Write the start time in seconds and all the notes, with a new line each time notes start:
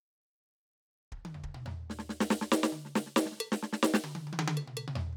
1.12 kick
1.25 high tom
1.34 floor tom
1.43 kick
1.54 mid tom
1.66 floor tom
1.90 snare
1.99 snare
2.09 snare
2.20 snare
2.30 snare
2.41 snare
2.52 snare
2.63 snare
2.72 high tom
2.85 snare
2.95 snare
3.06 snare
3.16 snare
3.26 snare
3.32 snare
3.36 snare, percussion
3.52 snare
3.62 snare
3.83 snare
3.94 snare
4.04 high tom
4.15 high tom
4.27 high tom
4.33 high tom
4.39 high tom
4.48 high tom
4.57 percussion
4.67 mid tom
4.77 percussion
4.88 mid tom
4.95 floor tom
5.12 kick